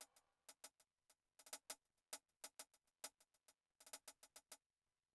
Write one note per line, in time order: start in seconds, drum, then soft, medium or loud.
0.01 closed hi-hat medium
0.17 closed hi-hat soft
0.33 closed hi-hat soft
0.49 closed hi-hat medium
0.64 closed hi-hat medium
0.80 closed hi-hat soft
1.10 closed hi-hat soft
1.39 closed hi-hat soft
1.47 closed hi-hat soft
1.53 closed hi-hat loud
1.70 closed hi-hat loud
1.85 closed hi-hat soft
1.98 closed hi-hat soft
2.13 closed hi-hat loud
2.29 closed hi-hat soft
2.44 closed hi-hat medium
2.60 closed hi-hat medium
2.74 closed hi-hat soft
2.88 closed hi-hat soft
3.04 closed hi-hat loud
3.21 closed hi-hat soft
3.34 closed hi-hat soft
3.48 closed hi-hat soft
3.81 closed hi-hat soft
3.87 closed hi-hat soft
3.93 closed hi-hat medium
4.08 closed hi-hat medium
4.23 closed hi-hat soft
4.36 closed hi-hat medium
4.52 closed hi-hat medium